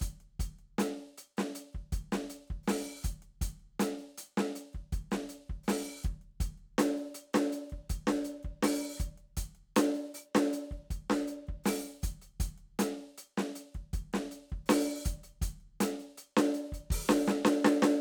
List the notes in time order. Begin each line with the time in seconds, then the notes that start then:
0.01 closed hi-hat, kick, hi-hat pedal
0.21 closed hi-hat
0.40 closed hi-hat, kick
0.59 closed hi-hat
0.79 closed hi-hat, snare
1.00 closed hi-hat
1.18 closed hi-hat
1.38 closed hi-hat, snare
1.56 closed hi-hat
1.74 kick, closed hi-hat
1.93 closed hi-hat, kick
2.13 closed hi-hat, snare
2.30 closed hi-hat
2.48 kick, closed hi-hat
2.64 hi-hat pedal
2.68 open hi-hat, snare
3.03 closed hi-hat, kick, hi-hat pedal
3.23 closed hi-hat
3.42 closed hi-hat, kick
3.60 closed hi-hat
3.80 closed hi-hat, snare
3.99 closed hi-hat
4.18 closed hi-hat
4.38 snare, closed hi-hat
4.56 closed hi-hat
4.74 kick, closed hi-hat
4.93 closed hi-hat, kick
5.12 closed hi-hat, snare
5.30 closed hi-hat
5.49 kick, closed hi-hat
5.64 hi-hat pedal
5.69 open hi-hat, snare
6.04 kick, closed hi-hat, hi-hat pedal
6.22 closed hi-hat
6.41 closed hi-hat, kick
6.58 closed hi-hat
6.79 closed hi-hat, snare
6.98 closed hi-hat
7.15 closed hi-hat
7.34 closed hi-hat, snare
7.53 closed hi-hat
7.70 kick, closed hi-hat
7.90 closed hi-hat, kick
8.08 snare, closed hi-hat
8.25 closed hi-hat
8.44 kick, closed hi-hat
8.63 open hi-hat, snare
8.98 closed hi-hat, kick, cross-stick, hi-hat pedal
9.18 closed hi-hat
9.38 closed hi-hat, kick
9.56 closed hi-hat
9.77 closed hi-hat, snare
9.95 closed hi-hat
10.15 open hi-hat, hi-hat pedal
10.35 closed hi-hat, snare
10.54 closed hi-hat
10.72 kick, closed hi-hat
10.91 closed hi-hat, kick
11.10 snare, closed hi-hat
11.28 closed hi-hat
11.48 kick, closed hi-hat
11.65 open hi-hat, snare, hi-hat pedal
12.03 closed hi-hat, kick, hi-hat pedal
12.22 closed hi-hat
12.41 closed hi-hat, kick
12.58 closed hi-hat
12.80 closed hi-hat, snare
12.99 closed hi-hat
13.18 closed hi-hat
13.38 closed hi-hat, snare
13.56 closed hi-hat
13.75 kick, closed hi-hat
13.94 closed hi-hat, kick
14.14 snare, closed hi-hat
14.32 closed hi-hat
14.51 kick, closed hi-hat
14.67 open hi-hat, snare, hi-hat pedal
15.05 closed hi-hat, kick, hi-hat pedal
15.24 closed hi-hat
15.42 closed hi-hat, kick
15.61 closed hi-hat
15.81 closed hi-hat, snare
16.00 closed hi-hat
16.18 closed hi-hat
16.38 closed hi-hat, snare
16.55 closed hi-hat
16.73 closed hi-hat, kick
16.91 open hi-hat, kick
17.10 snare
17.28 snare, hi-hat pedal
17.46 snare
17.65 snare
17.83 snare